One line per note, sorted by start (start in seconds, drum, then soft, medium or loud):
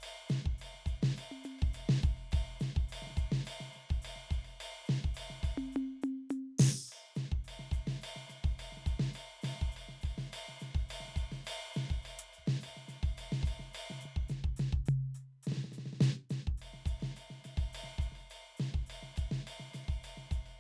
0.01 hi-hat pedal medium
0.01 ride bell medium
0.29 snare medium
0.29 hi-hat pedal medium
0.45 kick soft
0.45 snare soft
0.58 hi-hat pedal medium
0.58 ride bell medium
0.74 snare soft
0.86 kick soft
0.86 hi-hat pedal medium
0.86 ride soft
1.02 snare medium
1.02 ride soft
1.16 hi-hat pedal medium
1.16 ride bell medium
1.32 high tom medium
1.44 hi-hat pedal medium
1.44 high tom medium
1.44 ride soft
1.59 kick medium
1.59 ride soft
1.74 hi-hat pedal medium
1.74 ride bell medium
1.89 snare loud
2.02 kick medium
2.02 hi-hat pedal medium
2.02 ride soft
2.17 ride soft
2.31 kick medium
2.31 hi-hat pedal medium
2.31 ride bell medium
2.60 snare medium
2.60 hi-hat pedal medium
2.60 ride soft
2.75 kick medium
2.75 ride soft
2.89 hi-hat pedal medium
2.89 ride bell medium
3.02 snare soft
3.07 snare soft
3.10 snare soft
3.17 kick soft
3.17 hi-hat pedal medium
3.17 ride soft
3.32 snare medium
3.32 ride soft
3.45 hi-hat pedal medium
3.45 ride bell medium
3.61 snare soft
3.73 snare soft
3.73 hi-hat pedal medium
3.73 ride soft
3.89 kick soft
3.89 ride soft
4.02 hi-hat pedal medium
4.02 ride medium
4.16 snare soft
4.31 kick soft
4.31 hi-hat pedal medium
4.31 ride soft
4.45 ride soft
4.60 hi-hat pedal medium
4.60 ride bell medium
4.86 snare medium
4.86 hi-hat pedal medium
4.90 ride bell soft
5.03 kick soft
5.03 ride soft
5.14 hi-hat pedal medium
5.14 ride bell medium
5.30 snare soft
5.43 kick soft
5.43 hi-hat pedal medium
5.43 ride medium
5.58 open hi-hat soft
5.58 high tom loud
5.72 hi-hat pedal medium
5.72 high tom loud
5.78 closed hi-hat soft
6.02 closed hi-hat soft
6.02 hi-hat pedal medium
6.02 high tom loud
6.30 closed hi-hat soft
6.30 hi-hat pedal medium
6.30 high tom loud
6.59 snare loud
6.59 hi-hat pedal medium
6.59 crash loud
6.88 hi-hat pedal medium
6.92 ride soft
7.15 snare medium
7.15 hi-hat pedal medium
7.32 kick soft
7.44 hi-hat pedal medium
7.48 ride bell medium
7.59 snare soft
7.72 kick soft
7.72 hi-hat pedal medium
7.72 ride soft
7.87 snare medium
7.87 ride soft
8.02 hi-hat pedal medium
8.02 ride bell medium
8.16 snare soft
8.30 snare soft
8.30 hi-hat pedal medium
8.30 ride soft
8.37 snare soft
8.44 kick medium
8.44 ride soft
8.59 hi-hat pedal medium
8.59 ride bell medium
8.72 snare soft
8.77 snare soft
8.86 kick soft
8.86 hi-hat pedal medium
8.86 ride soft
9.00 snare medium
9.00 ride soft
9.14 hi-hat pedal medium
9.14 ride bell medium
9.42 snare medium
9.42 hi-hat pedal medium
9.42 ride medium
9.59 kick soft
9.59 ride soft
9.64 snare soft
9.72 hi-hat pedal medium
9.77 ride bell medium
9.89 snare soft
10.01 kick soft
10.01 hi-hat pedal medium
10.05 ride soft
10.18 snare soft
10.18 ride soft
10.33 hi-hat pedal medium
10.33 ride bell medium
10.49 snare soft
10.60 snare soft
10.60 hi-hat pedal medium
10.60 ride soft
10.75 kick soft
10.75 ride soft
10.89 hi-hat pedal medium
10.89 ride bell medium
11.01 snare soft
11.05 snare soft
11.08 snare soft
11.16 kick soft
11.16 hi-hat pedal medium
11.16 ride soft
11.32 snare soft
11.32 ride soft
11.45 hi-hat pedal medium
11.45 ride bell loud
11.73 snare medium
11.73 hi-hat pedal medium
11.73 ride soft
11.89 kick soft
11.89 ride soft
12.02 hi-hat pedal soft
12.02 ride bell medium
12.19 closed hi-hat loud
12.33 hi-hat pedal medium
12.33 ride bell soft
12.38 kick soft
12.46 snare medium
12.46 ride soft
12.61 hi-hat pedal medium
12.61 ride bell medium
12.67 kick soft
12.77 snare soft
12.89 snare soft
12.89 hi-hat pedal medium
12.89 ride soft
13.03 kick medium
13.03 ride soft
13.12 kick soft
13.18 hi-hat pedal medium
13.18 ride medium
13.32 snare medium
13.43 kick soft
13.43 hi-hat pedal medium
13.47 ride medium
13.60 snare soft
13.73 hi-hat pedal medium
13.73 ride medium
13.90 snare soft
13.90 floor tom medium
14.01 hi-hat pedal medium
14.06 floor tom soft
14.16 kick soft
14.29 snare soft
14.29 floor tom medium
14.29 hi-hat pedal medium
14.44 kick soft
14.57 snare medium
14.57 floor tom medium
14.57 hi-hat pedal medium
14.73 kick medium
14.86 floor tom loud
14.86 hi-hat pedal medium
15.15 hi-hat pedal medium
15.43 hi-hat pedal medium
15.47 snare medium
15.52 snare medium
15.57 snare soft
15.64 snare soft
15.72 snare soft
15.72 hi-hat pedal medium
15.78 snare soft
15.86 snare soft
15.93 snare soft
16.01 snare loud
16.01 hi-hat pedal medium
16.30 snare medium
16.30 hi-hat pedal medium
16.47 kick soft
16.58 hi-hat pedal medium
16.62 ride bell soft
16.74 snare soft
16.86 kick soft
16.86 hi-hat pedal medium
16.86 ride soft
17.00 snare medium
17.00 ride soft
17.16 hi-hat pedal medium
17.16 ride bell soft
17.30 snare soft
17.44 snare soft
17.44 hi-hat pedal medium
17.44 ride soft
17.57 kick soft
17.57 ride soft
17.73 hi-hat pedal medium
17.73 ride medium
17.84 snare soft
17.99 kick soft
17.99 hi-hat pedal medium
17.99 ride soft
18.12 snare soft
18.12 ride soft
18.30 hi-hat pedal medium
18.30 ride bell medium
18.57 snare medium
18.57 hi-hat pedal medium
18.57 ride soft
18.74 kick soft
18.74 snare soft
18.86 hi-hat pedal medium
18.86 ride bell medium
19.03 snare soft
19.16 kick soft
19.16 hi-hat pedal medium
19.16 ride soft
19.31 snare medium
19.31 ride soft
19.47 hi-hat pedal medium
19.47 ride medium
19.60 snare soft
19.74 snare soft
19.74 hi-hat pedal medium
19.74 ride soft
19.88 kick soft
19.88 ride soft
20.04 hi-hat pedal medium
20.04 ride bell medium
20.17 snare soft
20.31 kick soft
20.31 hi-hat pedal medium
20.31 ride soft
20.46 ride soft